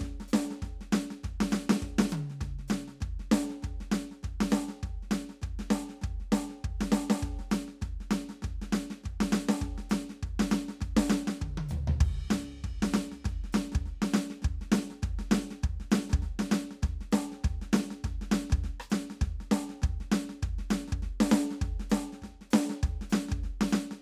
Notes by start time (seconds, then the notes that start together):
0.01 kick, snare
0.20 snare
0.28 hi-hat pedal
0.34 snare
0.51 snare
0.62 kick, snare
0.81 snare
0.92 snare, hi-hat pedal
1.11 snare
1.24 kick, snare
1.41 snare
1.51 snare, hi-hat pedal
1.70 snare
1.82 kick, snare
1.99 snare
2.10 hi-hat pedal, high tom
2.30 snare
2.41 kick, snare
2.59 snare
2.68 snare, hi-hat pedal
2.88 snare
3.01 kick, snare
3.20 snare
3.32 snare, hi-hat pedal
3.50 snare
3.63 kick, snare
3.81 snare
3.92 snare, hi-hat pedal
3.97 kick
4.11 snare
4.23 kick, snare
4.41 snare
4.50 snare, hi-hat pedal
4.69 snare
4.83 kick, snare
5.03 snare
5.11 snare, hi-hat pedal
5.29 snare
5.42 kick, snare
5.59 snare
5.71 snare, hi-hat pedal
5.89 snare
6.02 kick, snare
6.20 snare
6.32 snare, hi-hat pedal
6.50 snare
6.64 kick, snare
6.81 snare
6.92 snare, hi-hat pedal
7.10 snare
7.23 kick, snare
7.39 snare
7.51 snare, hi-hat pedal
7.68 snare
7.82 kick, snare
8.01 snare
8.11 snare, hi-hat pedal
8.29 snare
8.42 kick, snare
8.62 snare
8.73 snare, hi-hat pedal
8.90 snare
9.04 kick, snare
9.21 snare
9.32 snare, hi-hat pedal
9.49 snare
9.62 kick, snare
9.78 snare
9.90 snare, hi-hat pedal
9.95 kick
10.10 snare
10.23 kick, snare
10.40 snare
10.50 snare, hi-hat pedal
10.69 snare
10.81 kick, snare
10.97 snare
11.09 snare, hi-hat pedal
11.28 snare
11.42 kick, high tom
11.58 high tom
11.69 floor tom, hi-hat pedal
11.88 floor tom
12.01 kick, ride
12.21 kick
12.31 snare, hi-hat pedal
12.35 kick
12.64 kick, snare
12.83 snare
12.93 kick, snare, hi-hat pedal
13.12 snare
13.25 kick, snare
13.44 snare
13.53 snare, hi-hat pedal
13.72 kick, snare
13.86 snare
14.02 snare
14.13 kick, snare, hi-hat pedal
14.30 snare
14.42 kick, snare
14.61 snare
14.72 snare, hi-hat pedal
14.90 snare
15.03 kick, snare
15.19 snare
15.31 snare, hi-hat pedal
15.51 snare
15.63 kick, snare
15.80 snare
15.85 kick
15.91 snare, hi-hat pedal
16.07 kick, snare
16.13 kick
16.22 snare
16.39 snare
16.51 snare, hi-hat pedal
16.71 snare
16.83 kick, snare
17.01 kick, snare
17.12 snare, hi-hat pedal
17.32 snare
17.44 kick, snare
17.62 kick, snare
17.73 snare, hi-hat pedal
17.91 snare
18.04 kick, snare
18.21 kick, snare
18.32 snare, hi-hat pedal
18.50 kick, snare
18.64 snare
18.80 cross-stick
18.90 snare, hi-hat pedal
19.10 snare
19.21 kick, snare
19.40 snare
19.52 snare, hi-hat pedal
19.69 snare
19.82 kick, snare
20.00 kick, snare
20.12 snare, hi-hat pedal
20.29 snare
20.43 kick, snare
20.59 snare
20.70 snare, hi-hat pedal
20.88 snare
20.92 kick
21.03 snare
21.21 snare
21.30 snare, hi-hat pedal
21.51 snare
21.62 kick, snare
21.80 snare
21.90 snare, hi-hat pedal
22.13 snare
22.22 kick, snare
22.41 snare
22.51 snare, hi-hat pedal
22.70 snare
22.83 kick, snare
23.01 kick, snare
23.10 snare, hi-hat pedal
23.29 kick, snare
23.44 snare
23.61 snare
23.69 hi-hat pedal
23.73 snare
23.91 snare